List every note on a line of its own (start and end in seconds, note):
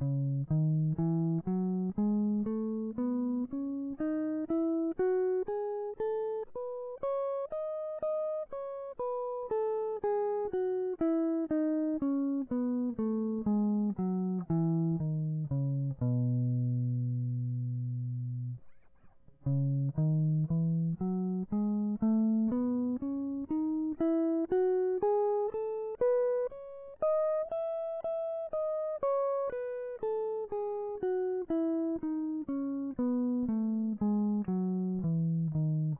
0.03 0.47 C#3
0.52 0.97 D#3
0.99 1.43 E3
1.48 1.95 F#3
1.99 2.47 G#3
2.47 2.95 A3
2.99 3.48 B3
3.53 3.96 C#4
4.00 4.47 D#4
4.50 4.95 E4
4.99 5.46 F#4
5.48 5.95 G#4
6.00 6.46 A4
7.03 7.49 C#5
7.52 8.02 D#5
8.03 8.46 D#5
9.00 9.52 B4
9.51 10.00 A4
10.04 10.51 G#4
10.54 10.97 F#4
11.01 11.48 E4
11.51 12.00 D#4
12.02 12.45 C#4
12.52 12.95 B3
12.99 13.45 A3
13.47 13.95 G#3
13.99 14.44 F#3
14.51 14.99 E3
15.02 15.50 D#3
15.53 15.95 C#3
16.03 18.59 B2
19.48 19.94 C#3
19.99 20.49 D#3
20.52 20.97 E3
21.01 21.46 F#3
21.53 21.98 G#3
22.03 22.54 A3
22.52 23.00 B3
23.03 23.48 C#4
23.51 23.96 D#4
24.01 24.48 E4
24.52 25.00 F#4
25.03 25.54 G#4
25.54 25.97 A4
26.02 26.50 B4
26.50 26.93 C#5
27.02 27.51 D#5
27.52 28.04 E5
28.04 28.50 E5
28.53 28.99 D#5
29.03 29.51 C#5
29.50 29.99 B4
30.03 30.49 A4
30.52 31.01 G#4
31.03 31.46 F#4
31.50 32.00 E4
32.03 32.46 D#4
32.49 32.95 C#4
32.99 33.51 B3
33.49 33.97 A3
34.02 34.45 G#3
34.49 35.06 F#3
35.05 35.97 E3